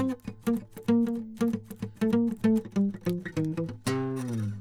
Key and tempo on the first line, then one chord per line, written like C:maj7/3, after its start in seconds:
C major, 97 BPM
0.00 C:min7(*5)